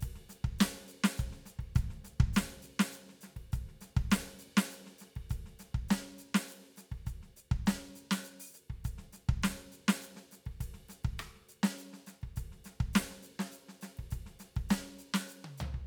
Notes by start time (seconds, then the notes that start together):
0.01 kick, hi-hat pedal, ride
0.16 snare
0.30 snare, hi-hat pedal, ride
0.45 kick, ride
0.59 snare, hi-hat pedal, ride
0.75 snare
0.77 snare
0.88 hi-hat pedal
1.04 snare
1.18 kick, hi-hat pedal, ride
1.32 snare
1.46 snare, hi-hat pedal, ride
1.59 kick, ride
1.76 kick, hi-hat pedal, ride
1.90 snare
2.05 snare, hi-hat pedal, ride
2.20 kick, ride
2.34 snare, hi-hat pedal, ride
2.63 hi-hat pedal
2.68 ride
2.80 snare
2.92 hi-hat pedal
2.98 ride
3.09 snare
3.21 snare, hi-hat pedal, ride
3.37 kick, ride
3.53 kick, hi-hat pedal, ride
3.69 snare
3.81 snare, hi-hat pedal, ride
3.97 kick, ride
4.11 snare, hi-hat pedal, ride
4.23 snare
4.27 snare
4.39 hi-hat pedal, ride
4.57 snare
4.70 hi-hat pedal
4.75 ride
4.87 snare
4.99 snare, hi-hat pedal, ride
5.16 kick, ride
5.30 kick, hi-hat pedal, ride
5.46 snare
5.59 snare, hi-hat pedal, ride
5.75 kick, ride
5.89 snare, hi-hat pedal
6.03 snare
6.19 hi-hat pedal, ride
6.35 snare
6.49 hi-hat pedal
6.53 ride
6.64 snare
6.77 snare, hi-hat pedal, ride
6.92 kick, ride
7.07 kick, hi-hat pedal, ride
7.23 snare
7.37 hi-hat pedal, ride
7.52 kick, ride
7.67 snare, hi-hat pedal, ride
7.81 snare
7.96 hi-hat pedal
8.11 snare
8.25 hi-hat pedal
8.40 open hi-hat
8.54 hi-hat pedal, ride
8.70 kick
8.85 kick, hi-hat pedal, ride
8.98 snare
9.13 snare, hi-hat pedal, ride
9.29 kick, ride
9.43 snare, hi-hat pedal, ride
9.54 cross-stick
9.59 cross-stick
9.72 hi-hat pedal
9.89 snare
10.02 hi-hat pedal, ride
10.17 snare
10.32 snare, hi-hat pedal, ride
10.46 kick, ride
10.61 kick, hi-hat pedal, ride
10.74 snare
10.89 snare, hi-hat pedal, ride
11.05 kick, ride
11.19 cross-stick, hi-hat pedal, ride
11.36 snare
11.49 hi-hat pedal, ride
11.64 snare
11.78 hi-hat pedal, ride
11.94 snare
12.07 snare, hi-hat pedal, ride
12.22 kick, ride
12.36 kick, hi-hat pedal, ride
12.52 snare
12.65 snare, hi-hat pedal, ride
12.81 kick, ride
12.94 snare, hi-hat pedal, ride
13.11 snare
13.23 hi-hat pedal, ride
13.40 snare
13.52 hi-hat pedal
13.56 ride
13.69 snare
13.82 snare, hi-hat pedal, ride
13.98 kick, ride
14.11 kick, hi-hat pedal, ride
14.26 snare
14.40 snare, hi-hat pedal, ride
14.56 kick, ride
14.69 snare, hi-hat pedal, ride
14.83 snare
14.99 hi-hat pedal, ride
15.14 snare
15.29 hi-hat pedal, ride
15.45 high tom
15.58 floor tom, hi-hat pedal
15.75 kick